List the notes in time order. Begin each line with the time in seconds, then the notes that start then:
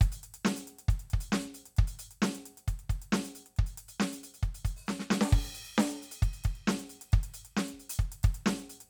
0.01 kick, closed hi-hat
0.12 closed hi-hat
0.23 closed hi-hat
0.34 closed hi-hat
0.45 snare
0.56 closed hi-hat
0.67 closed hi-hat
0.79 closed hi-hat
0.89 kick, closed hi-hat
1.00 closed hi-hat
1.10 kick, closed hi-hat
1.20 closed hi-hat
1.32 snare
1.42 closed hi-hat
1.54 closed hi-hat
1.66 closed hi-hat
1.77 kick, closed hi-hat
1.87 closed hi-hat
1.99 closed hi-hat
2.11 closed hi-hat
2.22 snare
2.35 closed hi-hat
2.46 closed hi-hat
2.57 closed hi-hat
2.68 kick, closed hi-hat
2.79 closed hi-hat
2.90 kick, closed hi-hat
3.02 closed hi-hat
3.12 snare
3.25 closed hi-hat
3.35 closed hi-hat
3.46 closed hi-hat
3.56 kick, closed hi-hat
3.66 closed hi-hat
3.78 closed hi-hat
3.88 closed hi-hat
4.00 snare
4.13 closed hi-hat
4.23 closed hi-hat
4.34 closed hi-hat
4.43 kick, closed hi-hat
4.55 closed hi-hat
4.65 closed hi-hat, kick
4.76 open hi-hat
4.87 snare, hi-hat pedal
5.00 snare
5.10 snare
5.21 snare
5.32 kick, crash
5.44 closed hi-hat
5.65 closed hi-hat
5.78 snare
5.90 closed hi-hat
6.02 closed hi-hat
6.11 closed hi-hat
6.22 kick, closed hi-hat
6.33 closed hi-hat
6.44 kick, closed hi-hat
6.55 closed hi-hat
6.67 snare
6.79 closed hi-hat
6.90 closed hi-hat
7.01 closed hi-hat
7.12 kick, closed hi-hat
7.23 closed hi-hat
7.34 closed hi-hat
7.45 closed hi-hat
7.57 snare
7.68 closed hi-hat
7.74 kick
7.80 closed hi-hat
7.90 closed hi-hat
7.99 kick, closed hi-hat
8.12 closed hi-hat
8.23 kick, closed hi-hat
8.35 closed hi-hat
8.46 snare
8.60 closed hi-hat
8.70 closed hi-hat
8.80 closed hi-hat